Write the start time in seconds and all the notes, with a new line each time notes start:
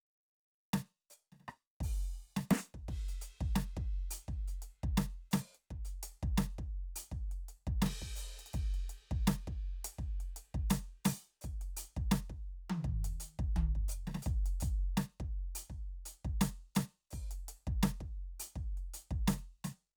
0.73 snare
1.10 hi-hat pedal
1.32 snare
1.40 snare
1.48 cross-stick
1.80 open hi-hat, kick
2.36 snare
2.50 snare, hi-hat pedal
2.74 kick
2.88 kick, crash
3.08 closed hi-hat
3.21 closed hi-hat
3.40 kick
3.56 snare
3.77 kick
4.11 closed hi-hat
4.28 kick
4.48 closed hi-hat
4.62 closed hi-hat
4.83 kick
4.97 snare
5.31 snare, hi-hat pedal
5.54 closed hi-hat
5.70 kick
5.85 closed hi-hat
6.03 closed hi-hat
6.23 kick
6.37 snare
6.58 kick
6.96 closed hi-hat
7.11 kick
7.31 closed hi-hat
7.48 closed hi-hat
7.67 kick
7.82 snare, crash
7.86 snare
8.01 kick
8.16 hi-hat pedal
8.39 closed hi-hat
8.46 closed hi-hat
8.53 kick, closed hi-hat
8.74 closed hi-hat
8.89 closed hi-hat
9.11 kick
9.27 snare
9.47 kick
9.84 closed hi-hat
9.98 kick
10.20 closed hi-hat
10.36 closed hi-hat
10.54 kick
10.70 open hi-hat, snare
11.05 open hi-hat, snare
11.41 kick, hi-hat pedal
11.61 closed hi-hat
11.77 closed hi-hat
11.96 kick
12.11 snare
12.29 kick
12.70 high tom
12.84 kick
13.04 closed hi-hat
13.20 closed hi-hat
13.39 kick
13.56 floor tom
13.75 kick
13.88 hi-hat pedal
14.07 snare
14.14 snare
14.22 closed hi-hat, kick
14.46 closed hi-hat
14.60 closed hi-hat, kick
14.97 snare
15.20 kick
15.55 closed hi-hat
15.70 kick
16.05 closed hi-hat
16.25 kick
16.41 open hi-hat, snare
16.75 open hi-hat, snare
17.11 kick, hi-hat pedal
17.31 closed hi-hat
17.48 closed hi-hat
17.67 kick
17.83 snare
18.00 kick
18.40 closed hi-hat
18.56 kick
18.77 closed hi-hat
18.94 closed hi-hat
19.11 kick
19.28 open hi-hat, snare
19.33 snare
19.64 open hi-hat, snare